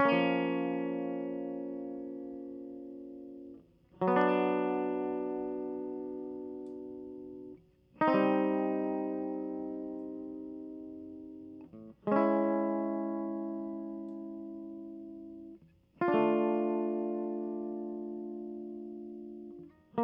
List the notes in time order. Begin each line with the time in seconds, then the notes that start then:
0.00 C#4
0.06 A#3
0.13 F3
4.02 F#3
4.08 B3
4.17 D4
8.02 D#4
8.08 C4
8.15 G3
12.08 G#3
12.12 C#4
12.16 E4
15.65 E2
16.02 F4
16.08 D4
16.14 A3
16.20 D#3